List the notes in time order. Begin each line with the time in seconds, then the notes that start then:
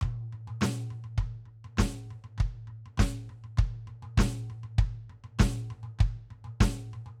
0.01 kick, mid tom
0.33 mid tom
0.48 mid tom
0.61 snare, mid tom
0.91 mid tom
1.04 mid tom
1.18 kick, mid tom
1.46 mid tom
1.64 mid tom
1.77 kick, snare, mid tom
2.11 mid tom
2.24 mid tom
2.38 kick, mid tom
2.67 mid tom
2.86 mid tom
2.98 kick, snare, mid tom
3.29 mid tom
3.44 mid tom
3.58 kick, mid tom
3.87 mid tom
4.03 mid tom
4.18 kick, snare, mid tom
4.50 mid tom
4.63 mid tom
4.78 kick, mid tom
5.10 mid tom
5.24 mid tom
5.39 kick, snare, mid tom
5.70 mid tom
5.83 mid tom
5.99 kick, mid tom
6.30 mid tom
6.44 mid tom
6.61 kick, snare, mid tom
6.93 mid tom
7.06 mid tom